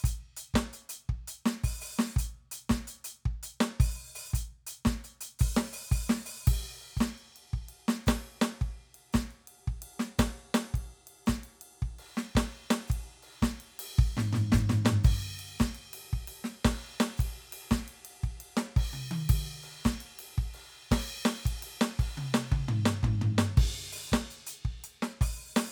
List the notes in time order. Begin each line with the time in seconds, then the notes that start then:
0.01 kick, hi-hat pedal
0.05 closed hi-hat
0.37 closed hi-hat
0.54 kick, snare
0.73 closed hi-hat
0.89 closed hi-hat
1.09 kick
1.28 closed hi-hat
1.46 snare
1.64 open hi-hat, kick
1.81 open hi-hat
1.99 snare
2.12 hi-hat pedal
2.16 closed hi-hat, kick
2.51 closed hi-hat
2.70 kick, snare
2.87 closed hi-hat
3.04 closed hi-hat
3.26 kick
3.43 closed hi-hat
3.61 snare
3.80 open hi-hat, kick
4.15 open hi-hat
4.31 closed hi-hat, kick, hi-hat pedal
4.67 closed hi-hat
4.85 kick, snare
5.04 closed hi-hat
5.21 closed hi-hat
5.39 open hi-hat, kick
5.57 snare
5.73 open hi-hat
5.92 open hi-hat, kick
6.09 snare
6.26 open hi-hat
6.47 kick, crash
6.81 crash
6.97 kick, snare, hi-hat pedal
7.18 crash
7.36 crash
7.53 kick
7.69 crash
7.88 snare
8.06 kick, snare, hi-hat pedal, crash
8.42 snare, crash
8.61 kick, crash
8.95 crash
9.13 kick, snare, hi-hat pedal
9.31 crash
9.48 crash
9.68 kick
9.82 crash
10.00 snare
10.19 kick, snare, hi-hat pedal, crash
10.54 snare, crash
10.74 kick, crash
11.07 crash
11.26 kick, snare, hi-hat pedal
11.44 crash
11.61 crash
11.82 kick
11.99 crash
12.17 snare
12.35 kick, snare, crash
12.71 snare, crash
12.88 kick, hi-hat pedal
12.92 crash
13.23 crash
13.42 kick, snare
13.60 crash
13.79 crash
13.99 kick
14.17 snare, floor tom
14.33 snare, floor tom
14.52 kick, snare, floor tom, hi-hat pedal
14.69 snare, floor tom
14.85 snare, floor tom
15.04 kick, hi-hat pedal, crash
15.39 crash
15.59 kick, snare, hi-hat pedal
15.75 crash
15.93 crash
16.13 kick
16.28 crash
16.44 snare
16.65 kick, snare, crash
17.00 snare, crash
17.17 kick, hi-hat pedal, crash
17.53 crash
17.71 kick, snare, hi-hat pedal
17.88 crash
18.05 crash
18.22 kick, hi-hat pedal
18.40 crash
18.57 snare
18.76 kick, crash
18.93 mid tom
19.11 high tom
19.29 kick, hi-hat pedal, crash
19.63 crash
19.84 kick, snare, hi-hat pedal
20.01 crash
20.19 crash
20.38 kick
20.54 crash
20.91 kick, snare, crash
21.25 snare, crash
21.45 kick, hi-hat pedal, crash
21.62 crash
21.81 snare
21.99 kick, crash
22.17 mid tom
22.34 snare
22.52 kick, mid tom
22.69 floor tom
22.86 snare
23.03 kick, floor tom
23.22 kick, floor tom
23.38 snare
23.57 kick, ride
23.92 open hi-hat
24.10 kick, snare, hi-hat pedal
24.30 closed hi-hat
24.47 closed hi-hat
24.65 kick
24.84 closed hi-hat
25.02 snare
25.21 open hi-hat, kick, cross-stick
25.56 open hi-hat, snare